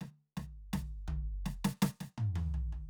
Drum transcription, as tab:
HH |-------------g--|
SD |g-o-o---oooo----|
T1 |-------------o--|
T2 |------------o---|
FT |g-o-o-o-------oo|